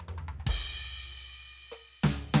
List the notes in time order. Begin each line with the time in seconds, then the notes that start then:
0.00 mid tom
0.08 mid tom
0.18 floor tom
0.28 floor tom
0.39 kick, floor tom
0.47 kick, crash
1.72 hi-hat pedal
2.04 snare, floor tom
2.34 snare, floor tom